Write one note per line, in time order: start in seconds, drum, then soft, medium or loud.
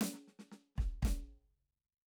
0.01 snare loud
0.13 snare soft
0.27 snare soft
0.39 snare soft
0.52 snare soft
0.75 kick soft
0.75 snare soft
0.79 snare soft
1.02 kick medium
1.02 snare soft
1.05 snare medium